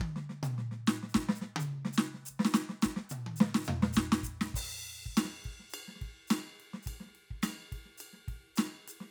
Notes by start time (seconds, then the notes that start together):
0.01 kick, high tom
0.08 kick
0.11 kick
0.17 snare
0.30 snare
0.44 hi-hat pedal, mid tom
0.59 snare
0.72 snare
0.88 snare, hi-hat pedal
1.04 snare
1.10 hi-hat pedal
1.15 kick, snare
1.30 snare
1.36 hi-hat pedal
1.42 snare
1.57 hi-hat pedal, high tom
1.86 snare
1.94 hi-hat pedal
1.99 snare
2.15 snare
2.26 hi-hat pedal
2.31 kick
2.40 snare
2.46 snare
2.55 snare, hi-hat pedal
2.70 snare
2.83 kick, snare, hi-hat pedal
2.97 snare
3.10 hi-hat pedal, mid tom
3.27 high tom
3.37 hi-hat pedal
3.41 snare
3.55 snare
3.65 hi-hat pedal, floor tom
3.83 snare
3.94 kick, snare, hi-hat pedal
4.13 snare
4.24 kick, hi-hat pedal
4.30 kick
4.42 snare
4.47 cross-stick
4.55 kick, hi-hat pedal, crash
5.07 kick
5.18 snare, ride bell
5.25 snare
5.45 kick, ride
5.60 snare
5.71 hi-hat pedal, ride bell
5.89 snare
5.97 snare
6.02 kick, ride
6.08 kick
6.28 snare, hi-hat pedal, ride bell
6.61 ride
6.74 snare
6.84 kick, hi-hat pedal
6.88 ride bell
6.93 kick
7.01 snare
7.07 snare
7.16 ride
7.32 kick
7.43 snare, hi-hat pedal, ride bell
7.73 kick, ride
7.86 snare
7.99 hi-hat pedal, ride bell
8.14 snare
8.20 snare
8.29 kick, ride
8.35 kick
8.57 snare, hi-hat pedal, ride bell
8.89 hi-hat pedal, ride
9.01 snare